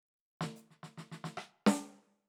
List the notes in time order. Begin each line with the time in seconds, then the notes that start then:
0.41 snare
0.56 hi-hat pedal
0.70 snare
0.83 snare
0.97 snare
1.12 snare
1.24 snare
1.37 cross-stick
1.66 snare